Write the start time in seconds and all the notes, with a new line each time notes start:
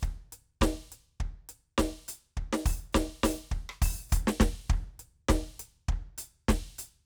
0.01 kick, hi-hat pedal
0.32 closed hi-hat
0.61 kick, snare
0.92 closed hi-hat
1.20 kick
1.49 closed hi-hat
1.78 kick, snare
2.08 closed hi-hat
2.37 kick
2.53 snare
2.66 open hi-hat, kick
2.93 kick, snare, hi-hat pedal
3.23 open hi-hat, kick, snare
3.50 kick, hi-hat pedal
3.69 cross-stick
3.82 open hi-hat, kick
4.09 closed hi-hat, kick, hi-hat pedal
4.27 snare
4.40 kick, snare
4.68 kick, hi-hat pedal
4.99 closed hi-hat
5.29 kick, snare
5.59 closed hi-hat
5.88 kick
6.18 closed hi-hat
6.48 kick, snare
6.78 closed hi-hat